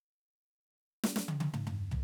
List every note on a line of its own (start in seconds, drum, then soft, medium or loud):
1.04 snare loud
1.09 hi-hat pedal soft
1.16 snare loud
1.28 high tom loud
1.40 high tom loud
1.54 mid tom loud
1.67 mid tom loud
1.91 floor tom medium